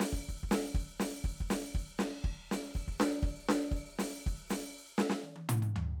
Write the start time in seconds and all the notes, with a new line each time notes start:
0.00 open hi-hat, snare
0.13 kick
0.22 open hi-hat
0.29 kick
0.43 kick
0.51 open hi-hat, snare
0.74 kick
1.00 open hi-hat, snare
1.23 open hi-hat, kick
1.40 kick
1.50 open hi-hat, snare
1.75 kick
1.98 snare, crash
2.24 kick, open hi-hat
2.51 open hi-hat, snare
2.65 snare
2.70 snare
2.75 open hi-hat, kick
2.88 kick
2.99 open hi-hat, snare
3.06 snare
3.14 snare
3.18 snare
3.21 kick, snare
3.49 open hi-hat, snare
3.54 snare
3.71 open hi-hat, kick
3.99 open hi-hat, snare
4.21 open hi-hat
4.26 kick
4.50 open hi-hat, snare
4.75 open hi-hat
4.98 snare
5.10 snare
5.23 high tom
5.36 high tom
5.49 mid tom
5.62 mid tom
5.76 floor tom